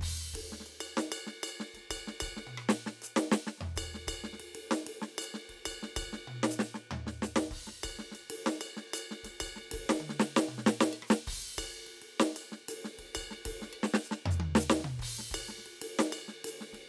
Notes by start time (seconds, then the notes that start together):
0.01 kick, hi-hat pedal, crash
0.21 cross-stick
0.34 kick, ride
0.52 snare
0.60 snare
0.66 snare, ride bell
0.81 ride bell
0.97 snare, hi-hat pedal
1.12 ride bell
1.27 snare
1.43 hi-hat pedal, ride bell
1.60 snare
1.74 kick, snare, ride bell
1.91 kick, hi-hat pedal, ride bell
2.08 snare
2.21 kick, ride bell
2.28 kick
2.37 snare
2.47 mid tom
2.58 cross-stick
2.69 snare, hi-hat pedal
2.86 snare
3.02 hi-hat pedal, ride bell
3.17 snare
3.32 snare
3.47 snare
3.58 snare, floor tom
3.76 kick, hi-hat pedal, ride bell
3.95 snare
4.08 kick, ride bell
4.24 snare
4.33 snare
4.40 ride
4.55 ride
4.71 snare, hi-hat pedal
4.87 ride
5.02 snare
5.18 hi-hat pedal, ride bell
5.34 snare
5.49 kick, snare, ride
5.66 kick, ride bell
5.83 snare
5.97 kick, ride bell
6.03 kick
6.13 snare
6.28 mid tom
6.43 snare
6.51 hi-hat pedal
6.59 snare
6.75 snare
6.91 floor tom
7.07 snare
7.22 snare, hi-hat pedal
7.36 snare
7.51 kick, crash
7.57 kick
7.67 snare
7.84 kick, ride bell
7.99 snare
8.12 snare, ride bell
8.30 ride
8.46 snare
8.61 ride bell
8.77 snare
8.94 hi-hat pedal, ride bell
9.11 snare
9.24 kick, snare, ride bell
9.41 kick, ride bell
9.56 snare
9.72 kick, ride
9.79 kick
9.89 snare
10.00 high tom
10.06 snare, hi-hat pedal
10.20 snare
10.37 snare
10.49 hi-hat pedal, mid tom
10.58 snare
10.67 snare
10.75 hi-hat pedal
10.81 snare
10.93 percussion
11.03 cross-stick
11.07 snare, hi-hat pedal
11.25 kick, hi-hat pedal, crash
11.40 kick
11.58 kick, ride bell
11.87 ride
12.02 ride
12.20 snare
12.36 ride bell
12.52 snare
12.68 hi-hat pedal, ride
12.85 snare
12.99 kick, ride
13.15 kick, hi-hat pedal, ride bell
13.31 snare
13.46 kick, ride
13.52 kick
13.62 snare
13.73 percussion
13.83 snare
13.94 snare
14.04 hi-hat pedal
14.11 snare
14.26 floor tom
14.31 hi-hat pedal
14.40 high tom
14.55 snare
14.60 hi-hat pedal
14.70 snare
14.79 snare
14.85 mid tom
14.90 cross-stick
14.98 kick, hi-hat pedal
15.02 crash
15.19 snare
15.31 kick, ride bell
15.49 snare
15.58 snare
15.66 ride
15.82 ride
15.99 snare, hi-hat pedal
16.13 ride bell
16.28 snare
16.45 hi-hat pedal, ride
16.61 snare
16.73 kick, snare, ride